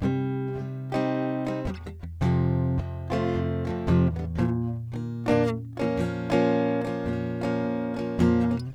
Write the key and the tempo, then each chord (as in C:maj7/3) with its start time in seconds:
A# minor, 110 BPM
0.02 C:min
2.21 F:maj
4.39 A#:min/5